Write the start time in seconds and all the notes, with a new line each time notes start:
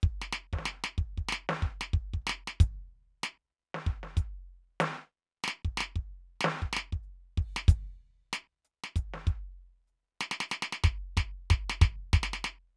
0.01 kick, hi-hat pedal
0.22 snare
0.33 snare
0.53 kick, snare
0.59 snare
0.66 snare, hi-hat pedal
0.84 snare
0.99 kick
1.18 kick
1.29 snare, hi-hat pedal
1.33 snare
1.50 snare
1.63 kick
1.82 snare
1.94 kick
2.14 kick
2.22 kick
2.27 snare
2.30 snare
2.48 snare
2.61 closed hi-hat, kick
3.24 closed hi-hat, snare
3.75 snare
3.87 kick, closed hi-hat
4.04 snare
4.18 closed hi-hat, kick
4.81 closed hi-hat, snare
5.44 snare, hi-hat pedal
5.48 snare
5.65 kick
5.78 snare
5.81 snare
5.96 kick
6.41 snare
6.45 snare
6.63 kick
6.73 snare
6.77 snare
6.93 kick
7.03 hi-hat pedal
7.38 kick, snare
7.42 crash, ride
7.57 snare
7.69 closed hi-hat, kick
8.34 closed hi-hat, snare
8.65 closed hi-hat
8.84 snare
8.96 closed hi-hat, kick
9.14 snare
9.28 closed hi-hat, kick
9.88 hi-hat pedal
10.21 snare, hi-hat pedal
10.32 snare
10.41 snare
10.49 snare, hi-hat pedal
10.63 snare
10.73 snare
10.84 kick, snare
11.17 kick, snare, hi-hat pedal
11.51 kick, snare, hi-hat pedal
11.70 snare
11.82 kick, snare, hi-hat pedal
12.14 kick, snare, hi-hat pedal
12.45 snare